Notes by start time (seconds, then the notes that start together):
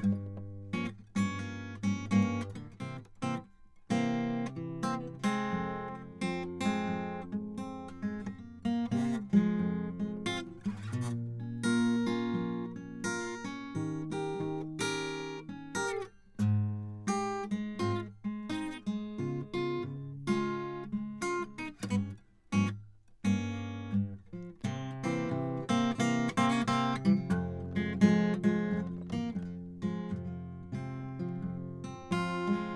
0.05 G2
0.74 F3 A#3 C#4
1.17 G2 F3 A#3 C#4
1.40 F3 A#3 C#4
1.84 G2 F3 A#3 C#4
2.12 G2 F3 A#3 C#4
2.57 F#3 A#3
2.81 C3 F#3 A#3 C4
3.23 C3 A#3 C4
3.29 F#3
3.92 C3 E3 A#3 C4
4.58 E3
4.84 A#3 C4
5.21 F3 G#3 C4
5.53 F2
6.22 F3 C4
6.62 C4
6.66 G#3
6.89 F2
7.34 G#3
7.59 C4
8.04 G#3
8.28 A#3
8.66 A#3
8.93 C3 A#3 C4
9.34 F3 G#3
9.61 F2
10.01 G#3
10.27 C4 F4
10.67 A3
10.95 A#3
11.03 A#2
11.41 C#4
11.64 A#3 F4 A#4
12.07 C#4 F4
12.34 F3 A#3
12.77 C#4
13.05 F4 A#4
13.46 C#4
13.76 D#3 G4 A#4
14.12 C#4 G4 A#4
14.41 D#3
14.80 C#4 G4 A#4
15.50 C#4
15.76 G4 A#4
16.40 G#2
17.09 G#3 G4
17.52 G#3
17.80 G#2 C4 F4
18.25 G#3
18.50 C4 D#4
18.88 G#3
19.19 C#3 B3 F4
19.55 C#3 B3 F4
19.85 C#3
20.28 G#3 C#4 F4
20.94 G#3
21.23 C#4 F4
21.59 B3 D#4
21.91 G2 C#4
22.53 G2 F3 A#3 C#4
23.25 G2 A#3 C#4
23.94 G2
24.34 F3
24.66 C3 E3 A#3 C4
25.05 E3 A#3 C4
25.33 C3 C4
25.70 C3 A#3 C4
25.93 C4
26.00 C3 E3 A#3
26.38 C3 A#3 C4
26.51 C#4
26.69 C3 A#3 C4
27.02 G3 C4
27.07 E3
27.19 F3
27.31 F2
27.37 G#3
27.77 F3 G#3
28.02 F2 F3 G#3
28.45 F3 G#3
28.73 F2
29.13 E3 A#3
29.37 F2
29.83 F3 G#3
30.12 F2 C3
30.73 C3 F3 G#3 C4
31.21 F3
31.44 F2
31.85 C4
32.12 F3 F4
32.48 G#3